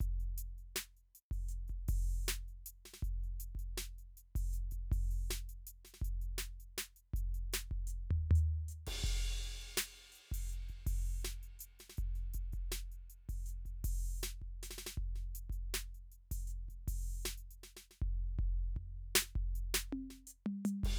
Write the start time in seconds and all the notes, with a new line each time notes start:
0.01 kick, closed hi-hat
0.20 closed hi-hat
0.38 closed hi-hat
0.58 closed hi-hat
0.76 snare, closed hi-hat
0.97 closed hi-hat
1.15 closed hi-hat
1.32 kick, open hi-hat
1.49 hi-hat pedal
1.68 kick, closed hi-hat
1.89 open hi-hat, kick
2.28 snare, closed hi-hat, hi-hat pedal
2.49 closed hi-hat
2.66 closed hi-hat
2.86 snare, closed hi-hat
2.94 snare
3.03 kick, closed hi-hat
3.24 closed hi-hat
3.40 closed hi-hat
3.55 kick, closed hi-hat
3.78 snare, closed hi-hat
3.99 closed hi-hat
4.17 closed hi-hat
4.36 kick, open hi-hat
4.53 hi-hat pedal, open hi-hat
4.72 kick, closed hi-hat
4.92 kick, open hi-hat
5.11 open hi-hat
5.31 snare, hi-hat pedal, open hi-hat
5.49 closed hi-hat
5.67 closed hi-hat
5.85 snare, closed hi-hat
5.94 snare
6.02 kick, closed hi-hat
6.22 closed hi-hat
6.38 snare, closed hi-hat
6.60 closed hi-hat
6.78 snare, closed hi-hat
6.97 closed hi-hat
7.14 kick, closed hi-hat
7.35 closed hi-hat
7.53 snare, closed hi-hat
7.72 kick
7.88 hi-hat pedal
8.11 floor tom
8.31 floor tom
8.36 hi-hat pedal
8.69 hi-hat pedal
8.87 kick, ride
9.04 kick, crash
9.44 closed hi-hat
9.61 closed hi-hat
9.78 open hi-hat, snare
9.94 snare, open hi-hat
10.12 closed hi-hat, hi-hat pedal
10.32 open hi-hat, kick
10.50 closed hi-hat, hi-hat pedal
10.69 kick, closed hi-hat
10.87 open hi-hat, kick
11.05 open hi-hat
11.22 snare, closed hi-hat, hi-hat pedal
11.43 closed hi-hat
11.60 closed hi-hat, hi-hat pedal
11.80 snare, closed hi-hat
11.90 snare
11.98 kick, closed hi-hat
12.16 snare, closed hi-hat
12.34 closed hi-hat, kick
12.53 kick, closed hi-hat
12.72 closed hi-hat, snare
12.92 closed hi-hat
13.10 closed hi-hat
13.29 kick, open hi-hat
13.46 closed hi-hat, hi-hat pedal
13.66 kick, closed hi-hat
13.85 open hi-hat, kick
14.19 hi-hat pedal
14.23 closed hi-hat, snare
14.42 kick
14.63 snare, hi-hat pedal
14.71 snare
14.78 snare
14.87 snare
14.98 kick
15.16 snare
15.35 closed hi-hat
15.50 kick, closed hi-hat
15.74 snare
15.95 closed hi-hat
16.12 closed hi-hat
16.32 open hi-hat, kick
16.48 hi-hat pedal
16.69 kick, closed hi-hat
16.88 open hi-hat, kick
17.23 snare, hi-hat pedal
17.38 closed hi-hat
17.51 closed hi-hat
17.64 snare
17.77 snare
17.91 snare
18.02 kick
18.39 kick
18.77 kick
19.16 snare
19.23 snare
19.36 kick
19.56 closed hi-hat
19.75 snare
19.93 high tom
20.11 snare
20.27 hi-hat pedal
20.46 mid tom
20.65 hi-hat pedal, mid tom
20.84 kick, ride